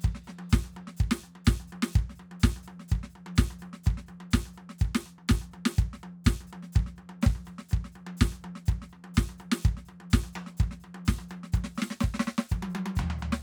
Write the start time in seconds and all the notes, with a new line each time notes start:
0.01 kick, hi-hat pedal, high tom
0.15 snare
0.24 hi-hat pedal, high tom
0.29 snare
0.39 high tom
0.50 kick, snare, hi-hat pedal
0.64 high tom
0.72 hi-hat pedal
0.77 high tom
0.87 snare
0.97 kick, hi-hat pedal, high tom
1.11 snare
1.20 hi-hat pedal, high tom
1.35 high tom
1.45 kick, snare, hi-hat pedal
1.60 high tom
1.68 hi-hat pedal
1.73 high tom
1.83 snare
1.93 kick, hi-hat pedal
1.98 high tom
2.10 snare
2.16 hi-hat pedal
2.20 high tom
2.31 high tom
2.40 kick, snare, hi-hat pedal
2.56 high tom
2.63 hi-hat pedal
2.68 high tom
2.80 snare
2.88 kick, hi-hat pedal, high tom
3.03 snare
3.10 hi-hat pedal
3.16 high tom
3.26 high tom
3.36 kick, snare, hi-hat pedal
3.51 high tom
3.59 hi-hat pedal, high tom
3.73 snare
3.84 kick, hi-hat pedal, high tom
3.98 snare
4.07 hi-hat pedal, high tom
4.21 high tom
4.31 kick, snare, hi-hat pedal
4.46 high tom
4.53 hi-hat pedal
4.58 high tom
4.70 snare
4.79 kick, hi-hat pedal
4.84 high tom
4.95 snare
5.02 hi-hat pedal
5.06 high tom
5.19 high tom
5.28 kick, snare, hi-hat pedal
5.42 high tom
5.51 hi-hat pedal, high tom
5.66 snare
5.76 kick, hi-hat pedal, high tom
5.93 snare
5.99 hi-hat pedal
6.03 high tom
6.25 kick, snare, hi-hat pedal
6.41 high tom
6.47 hi-hat pedal
6.53 high tom
6.63 snare
6.73 kick, hi-hat pedal, high tom
6.87 snare
6.96 hi-hat pedal, high tom
7.09 high tom
7.22 snare, hi-hat pedal
7.27 kick
7.35 high tom
7.45 hi-hat pedal, high tom
7.59 snare
7.69 hi-hat pedal, high tom
7.73 kick
7.85 snare
7.92 hi-hat pedal, high tom
8.07 high tom
8.17 kick, snare, hi-hat pedal
8.32 high tom
8.40 hi-hat pedal, high tom
8.56 snare
8.66 kick, hi-hat pedal, high tom
8.82 snare
8.89 hi-hat pedal
8.93 high tom
9.04 high tom
9.14 kick, snare, hi-hat pedal
9.29 high tom
9.38 hi-hat pedal, high tom
9.52 snare
9.62 kick, hi-hat pedal, high tom
9.77 snare
9.85 hi-hat pedal, high tom
10.00 high tom
10.10 kick, snare, hi-hat pedal
10.24 high tom
10.33 hi-hat pedal, high tom
10.47 snare
10.57 kick, hi-hat pedal, high tom
10.71 snare
10.80 hi-hat pedal
10.84 high tom
10.95 high tom
11.05 kick, snare, hi-hat pedal
11.19 high tom
11.29 hi-hat pedal, high tom
11.44 snare
11.53 kick, hi-hat pedal, high tom
11.64 snare
11.75 snare, hi-hat pedal
11.82 snare
11.91 snare
12.00 kick, snare, hi-hat pedal
12.14 snare
12.20 snare, hi-hat pedal
12.28 snare
12.38 snare
12.49 kick, hi-hat pedal, high tom
12.63 high tom
12.70 hi-hat pedal
12.75 high tom
12.86 high tom
12.96 kick, floor tom, hi-hat pedal
13.10 floor tom
13.19 floor tom, hi-hat pedal
13.33 snare